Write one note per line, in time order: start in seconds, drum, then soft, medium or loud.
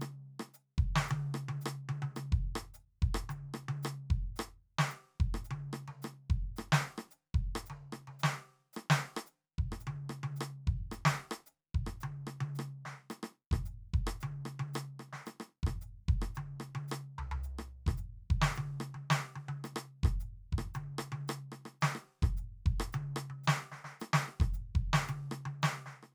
0.01 cross-stick medium
0.01 hi-hat pedal medium
0.40 cross-stick medium
0.54 hi-hat pedal medium
0.78 kick medium
0.96 snare medium
1.08 hi-hat pedal medium
1.08 high tom loud
1.34 cross-stick medium
1.49 high tom loud
1.61 hi-hat pedal medium
1.66 cross-stick medium
1.89 high tom loud
2.02 high tom medium
2.16 cross-stick medium
2.16 hi-hat pedal medium
2.32 kick medium
2.56 cross-stick medium
2.74 hi-hat pedal medium
3.02 kick medium
3.15 cross-stick medium
3.29 hi-hat pedal medium
3.29 high tom medium
3.54 cross-stick medium
3.69 high tom loud
3.83 cross-stick medium
3.83 hi-hat pedal medium
4.10 kick medium
4.36 cross-stick medium
4.36 hi-hat pedal medium
4.79 snare medium
4.90 hi-hat pedal medium
5.20 kick medium
5.34 cross-stick medium
5.45 hi-hat pedal medium
5.51 high tom medium
5.73 cross-stick medium
5.88 high tom medium
6.02 cross-stick medium
6.02 hi-hat pedal medium
6.30 kick medium
6.56 cross-stick medium
6.56 hi-hat pedal medium
6.72 snare loud
6.98 cross-stick medium
7.11 hi-hat pedal medium
7.34 kick medium
7.55 cross-stick medium
7.66 hi-hat pedal medium
7.70 high tom medium
7.93 cross-stick medium
8.07 high tom soft
8.19 hi-hat pedal medium
8.24 snare medium
8.73 cross-stick medium
8.73 hi-hat pedal medium
8.90 snare loud
9.17 cross-stick medium
9.26 hi-hat pedal medium
9.58 kick medium
9.72 cross-stick medium
9.80 hi-hat pedal medium
9.87 high tom medium
10.10 cross-stick medium
10.23 high tom medium
10.36 hi-hat pedal medium
10.41 cross-stick medium
10.67 kick medium
10.92 cross-stick medium
10.92 hi-hat pedal medium
11.05 snare loud
11.31 cross-stick medium
11.46 hi-hat pedal medium
11.75 kick medium
11.87 cross-stick medium
12.01 hi-hat pedal medium
12.01 high tom medium
12.27 cross-stick medium
12.41 high tom loud
12.55 cross-stick medium
12.55 hi-hat pedal medium
12.85 snare soft
13.10 cross-stick medium
13.10 hi-hat pedal medium
13.23 cross-stick medium
13.51 kick medium
13.51 cross-stick medium
13.65 hi-hat pedal medium
13.94 kick medium
14.07 cross-stick medium
14.21 hi-hat pedal medium
14.21 high tom medium
14.46 cross-stick medium
14.60 high tom medium
14.74 cross-stick medium
14.74 hi-hat pedal medium
15.00 cross-stick medium
15.13 snare soft
15.26 cross-stick medium
15.26 hi-hat pedal medium
15.40 cross-stick medium
15.63 kick medium
15.63 cross-stick medium
15.81 hi-hat pedal medium
16.09 kick medium
16.22 cross-stick medium
16.35 hi-hat pedal medium
16.35 high tom medium
16.60 cross-stick medium
16.75 high tom medium
16.88 cross-stick medium
16.88 hi-hat pedal medium
17.18 floor tom medium
17.32 floor tom medium
17.44 hi-hat pedal medium
17.59 cross-stick medium
17.87 kick medium
17.87 cross-stick medium
17.97 hi-hat pedal medium
18.30 kick medium
18.42 snare loud
18.55 hi-hat pedal medium
18.55 high tom loud
18.80 cross-stick medium
18.95 high tom medium
19.10 snare loud
19.10 hi-hat pedal medium
19.36 high tom medium
19.49 high tom medium
19.64 cross-stick medium
19.64 hi-hat pedal medium
19.76 cross-stick medium
20.03 kick medium
20.03 cross-stick medium
20.20 hi-hat pedal medium
20.53 kick medium
20.58 cross-stick medium
20.74 hi-hat pedal medium
20.74 high tom medium
20.99 cross-stick medium
21.12 high tom medium
21.28 cross-stick medium
21.28 hi-hat pedal medium
21.52 cross-stick medium
21.66 cross-stick medium
21.81 snare medium
21.81 hi-hat pedal medium
21.95 cross-stick medium
22.22 kick medium
22.22 cross-stick medium
22.37 hi-hat pedal medium
22.66 kick medium
22.80 cross-stick medium
22.93 hi-hat pedal medium
22.93 high tom loud
23.16 cross-stick medium
23.30 high tom soft
23.44 snare loud
23.44 hi-hat pedal medium
23.72 snare soft
23.85 snare soft
24.00 cross-stick medium
24.00 hi-hat pedal medium
24.13 snare loud
24.28 cross-stick soft
24.40 kick medium
24.40 cross-stick medium
24.54 hi-hat pedal medium
24.75 kick medium
24.93 snare loud
25.08 hi-hat pedal medium
25.08 high tom medium
25.31 cross-stick medium
25.46 high tom medium
25.62 snare medium
25.62 hi-hat pedal medium
25.86 snare soft
26.03 cross-stick soft